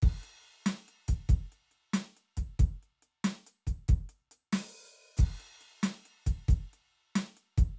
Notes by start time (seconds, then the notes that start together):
0.01 kick, crash
0.23 closed hi-hat
0.43 closed hi-hat
0.66 snare, closed hi-hat
0.88 closed hi-hat
1.08 kick, closed hi-hat
1.29 kick, closed hi-hat
1.52 closed hi-hat
1.71 closed hi-hat
1.93 snare, closed hi-hat
2.17 closed hi-hat
2.37 kick, closed hi-hat
2.59 kick, closed hi-hat
2.83 closed hi-hat
3.02 closed hi-hat
3.24 snare, closed hi-hat
3.46 closed hi-hat
3.67 kick, closed hi-hat
3.88 kick, closed hi-hat
4.09 closed hi-hat
4.31 closed hi-hat
4.52 snare, open hi-hat
5.17 kick, hi-hat pedal, crash
5.40 closed hi-hat
5.61 closed hi-hat
5.83 snare, closed hi-hat
6.05 closed hi-hat
6.26 kick, closed hi-hat
6.48 kick, closed hi-hat
6.73 closed hi-hat
7.15 snare, closed hi-hat
7.37 closed hi-hat
7.57 kick, closed hi-hat